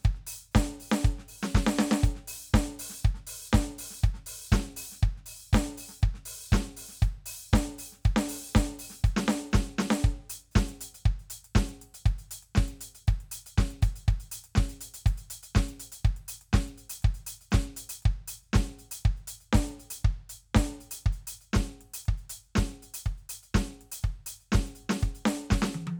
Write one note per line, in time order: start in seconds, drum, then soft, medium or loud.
0.01 snare soft
0.01 hi-hat pedal soft
0.05 kick loud
0.05 closed hi-hat soft
0.15 snare soft
0.27 open hi-hat loud
0.52 closed hi-hat medium
0.52 kick loud
0.52 snare loud
0.52 hi-hat pedal soft
0.62 snare soft
0.80 open hi-hat medium
0.92 snare loud
1.02 kick loud
1.02 hi-hat pedal soft
1.07 closed hi-hat soft
1.19 snare soft
1.29 open hi-hat medium
1.43 snare loud
1.51 hi-hat pedal soft
1.55 kick loud
1.55 snare loud
1.67 snare loud
1.79 snare loud
1.92 snare loud
1.99 hi-hat pedal soft
2.04 closed hi-hat medium
2.04 kick loud
2.16 snare soft
2.28 open hi-hat loud
2.50 hi-hat pedal soft
2.54 kick loud
2.54 snare loud
2.54 closed hi-hat medium
2.80 open hi-hat loud
2.90 snare soft
3.00 hi-hat pedal soft
3.05 kick loud
3.05 closed hi-hat soft
3.15 snare soft
3.27 open hi-hat loud
3.48 hi-hat pedal soft
3.53 kick loud
3.53 snare loud
3.53 closed hi-hat medium
3.61 snare soft
3.79 open hi-hat loud
3.91 snare soft
4.00 kick loud
4.00 closed hi-hat soft
4.00 hi-hat pedal soft
4.15 snare soft
4.27 open hi-hat loud
4.50 kick loud
4.50 snare loud
4.50 closed hi-hat medium
4.50 hi-hat pedal soft
4.60 snare soft
4.77 open hi-hat loud
4.92 snare soft
5.00 kick loud
5.00 closed hi-hat soft
5.00 hi-hat pedal soft
5.17 snare soft
5.26 open hi-hat loud
5.50 closed hi-hat medium
5.50 kick loud
5.50 hi-hat pedal soft
5.55 snare loud
5.70 snare soft
5.78 open hi-hat loud
5.89 snare soft
5.98 hi-hat pedal soft
6.03 kick loud
6.03 closed hi-hat soft
6.15 snare soft
6.26 open hi-hat loud
6.49 kick loud
6.49 hi-hat pedal soft
6.54 snare loud
6.54 closed hi-hat medium
6.61 snare soft
6.77 open hi-hat loud
6.89 snare soft
7.00 kick loud
7.00 closed hi-hat medium
7.00 hi-hat pedal soft
7.26 open hi-hat loud
7.51 kick loud
7.51 snare loud
7.51 hi-hat pedal soft
7.55 closed hi-hat medium
7.79 open hi-hat loud
7.93 snare soft
8.02 kick loud
8.02 closed hi-hat soft
8.02 hi-hat pedal soft
8.17 snare loud
8.29 open hi-hat loud
8.51 hi-hat pedal soft
8.56 closed hi-hat medium
8.56 kick loud
8.56 snare loud
8.79 open hi-hat loud
8.91 snare soft
8.99 hi-hat pedal soft
9.05 closed hi-hat medium
9.05 kick loud
9.17 snare loud
9.29 snare loud
9.52 kick loud
9.52 snare loud
9.52 hi-hat pedal soft
9.79 snare loud
9.91 snare loud
10.05 kick loud
10.30 closed hi-hat loud
10.52 hi-hat pedal soft
10.56 kick loud
10.56 snare loud
10.69 closed hi-hat medium
10.81 closed hi-hat loud
10.95 closed hi-hat medium
11.06 kick loud
11.06 closed hi-hat soft
11.20 closed hi-hat soft
11.31 closed hi-hat loud
11.45 closed hi-hat medium
11.56 kick loud
11.56 snare loud
11.69 closed hi-hat soft
11.82 closed hi-hat medium
11.95 closed hi-hat medium
12.06 kick loud
12.06 closed hi-hat soft
12.19 closed hi-hat soft
12.31 closed hi-hat loud
12.43 closed hi-hat soft
12.56 kick loud
12.56 snare loud
12.69 closed hi-hat medium
12.81 closed hi-hat loud
12.95 closed hi-hat medium
13.08 kick loud
13.08 closed hi-hat medium
13.21 closed hi-hat soft
13.32 closed hi-hat loud
13.47 closed hi-hat medium
13.58 kick loud
13.58 snare loud
13.71 closed hi-hat soft
13.83 closed hi-hat medium
13.83 kick loud
13.96 closed hi-hat medium
14.09 kick loud
14.09 closed hi-hat soft
14.20 closed hi-hat medium
14.32 closed hi-hat loud
14.45 closed hi-hat medium
14.56 kick loud
14.56 snare loud
14.69 closed hi-hat medium
14.81 closed hi-hat loud
14.94 closed hi-hat medium
15.06 kick loud
15.06 closed hi-hat medium
15.18 closed hi-hat medium
15.31 closed hi-hat loud
15.43 closed hi-hat medium
15.56 kick loud
15.56 snare loud
15.69 closed hi-hat medium
15.80 closed hi-hat loud
15.92 closed hi-hat medium
16.05 kick loud
16.05 closed hi-hat soft
16.17 closed hi-hat soft
16.29 closed hi-hat loud
16.42 closed hi-hat soft
16.54 kick loud
16.54 snare loud
16.68 closed hi-hat soft
16.78 closed hi-hat medium
16.90 closed hi-hat loud
17.03 kick loud
17.03 closed hi-hat soft
17.15 closed hi-hat soft
17.27 closed hi-hat loud
17.41 open hi-hat soft
17.51 kick loud
17.51 snare loud
17.51 hi-hat pedal soft
17.77 closed hi-hat loud
17.90 closed hi-hat loud
18.03 kick loud
18.03 closed hi-hat soft
18.28 closed hi-hat loud
18.43 closed hi-hat soft
18.54 kick loud
18.54 snare loud
18.69 closed hi-hat soft
18.79 closed hi-hat medium
18.92 closed hi-hat loud
19.05 kick loud
19.05 closed hi-hat soft
19.17 closed hi-hat soft
19.28 closed hi-hat loud
19.41 closed hi-hat soft
19.53 kick loud
19.53 snare loud
19.68 closed hi-hat soft
19.80 closed hi-hat medium
19.91 closed hi-hat loud
20.05 kick loud
20.30 closed hi-hat loud
20.42 closed hi-hat soft
20.55 kick loud
20.55 snare loud
20.81 closed hi-hat soft
20.92 closed hi-hat loud
21.03 kick loud
21.03 closed hi-hat soft
21.13 closed hi-hat soft
21.28 closed hi-hat loud
21.41 closed hi-hat soft
21.54 kick loud
21.54 snare loud
21.69 closed hi-hat soft
21.81 closed hi-hat soft
21.94 closed hi-hat loud
22.06 kick loud
22.06 closed hi-hat soft
22.18 closed hi-hat soft
22.30 closed hi-hat loud
22.30 kick soft
22.44 closed hi-hat soft
22.56 kick loud
22.56 snare loud
22.70 closed hi-hat soft
22.83 closed hi-hat medium
22.94 closed hi-hat loud
23.06 kick medium
23.06 closed hi-hat soft
23.18 closed hi-hat soft
23.25 kick soft
23.30 closed hi-hat loud
23.43 closed hi-hat soft
23.55 kick loud
23.55 snare loud
23.69 closed hi-hat soft
23.81 closed hi-hat soft
23.92 closed hi-hat loud
24.04 kick loud
24.04 closed hi-hat soft
24.27 closed hi-hat loud
24.41 closed hi-hat soft
24.52 kick loud
24.52 snare loud
24.66 closed hi-hat soft
24.76 closed hi-hat medium
24.90 snare loud
25.01 closed hi-hat soft
25.01 kick loud
25.15 closed hi-hat medium
25.26 snare loud
25.51 kick loud
25.51 snare loud
25.63 snare loud
25.75 high tom loud
25.88 high tom loud